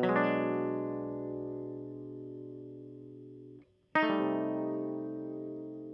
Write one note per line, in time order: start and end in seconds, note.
0.00 3.63 B2
0.04 3.68 F#3
0.10 3.61 G#3
0.16 3.65 D4
3.96 5.94 D#4
4.04 5.94 A3
4.11 5.94 G3
4.21 5.94 C3